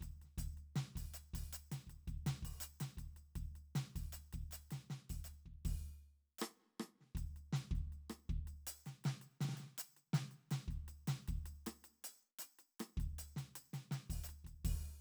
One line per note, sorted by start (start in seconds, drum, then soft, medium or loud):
0.01 kick soft
0.01 snare soft
0.01 percussion soft
0.22 snare soft
0.22 percussion soft
0.38 kick soft
0.38 percussion medium
0.57 percussion soft
0.76 snare medium
0.76 percussion soft
0.96 kick soft
0.96 percussion medium
1.14 percussion medium
1.34 kick soft
1.34 percussion medium
1.53 percussion medium
1.72 snare soft
1.72 percussion medium
1.87 kick soft
1.87 percussion soft
2.08 kick soft
2.08 percussion soft
2.26 snare medium
2.26 percussion medium
2.43 kick soft
2.43 percussion soft
2.60 percussion medium
2.64 percussion soft
2.80 snare soft
2.80 percussion medium
2.97 kick soft
2.97 percussion soft
3.16 percussion soft
3.36 kick soft
3.36 percussion soft
3.55 percussion soft
3.75 snare medium
3.75 percussion medium
3.96 kick soft
3.96 percussion soft
4.13 percussion medium
4.14 percussion soft
4.33 kick soft
4.33 percussion soft
4.51 percussion soft
4.51 percussion medium
4.71 snare soft
4.71 percussion soft
4.90 snare soft
4.90 percussion soft
5.10 kick soft
5.10 percussion soft
5.24 snare soft
5.24 percussion soft
5.46 kick soft
5.65 kick soft
5.65 percussion soft
6.39 cross-stick medium
6.39 percussion medium
6.80 cross-stick medium
6.84 cross-stick soft
7.01 snare soft
7.04 snare soft
7.15 kick soft
7.15 percussion soft
7.36 percussion soft
7.53 snare medium
7.53 percussion soft
7.71 kick soft
7.75 percussion soft
7.92 percussion soft
8.10 cross-stick medium
8.10 percussion soft
8.29 kick soft
8.29 percussion soft
8.47 percussion soft
8.67 percussion medium
8.86 snare soft
8.86 percussion soft
9.04 snare medium
9.04 percussion soft
9.22 percussion soft
9.41 snare medium
9.41 percussion soft
9.45 snare soft
9.49 snare soft
9.54 snare soft
9.54 percussion soft
9.60 snare soft
9.66 snare soft
9.73 snare soft
9.78 percussion medium
9.97 percussion soft
10.13 snare medium
10.13 percussion soft
10.31 percussion soft
10.51 snare medium
10.51 percussion medium
10.68 kick soft
10.68 percussion soft
10.88 percussion soft
11.08 snare medium
11.08 percussion medium
11.28 kick soft
11.28 percussion soft
11.46 percussion soft
11.66 cross-stick medium
11.66 percussion medium
11.84 percussion soft
12.04 percussion medium
12.39 percussion medium
12.42 percussion soft
12.59 percussion soft
12.80 cross-stick medium
12.80 percussion medium
12.97 kick soft
12.97 percussion soft
13.19 percussion medium
13.36 snare soft
13.36 percussion soft
13.56 percussion medium
13.73 snare soft
13.73 percussion soft
13.91 snare soft
13.91 percussion soft
14.10 kick soft
14.10 percussion medium
14.24 percussion medium
14.29 percussion soft
14.45 kick soft
14.45 percussion soft
14.65 kick medium
14.65 percussion medium